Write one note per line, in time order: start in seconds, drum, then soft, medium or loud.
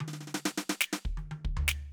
0.00 high tom medium
0.08 snare soft
0.13 snare soft
0.21 snare soft
0.27 snare soft
0.34 snare medium
0.45 snare medium
0.58 snare medium
0.69 snare medium
0.81 snare loud
0.93 snare medium
1.05 kick medium
1.17 closed hi-hat soft
1.17 high tom medium
1.31 high tom medium
1.45 kick medium
1.57 floor tom loud
1.68 snare loud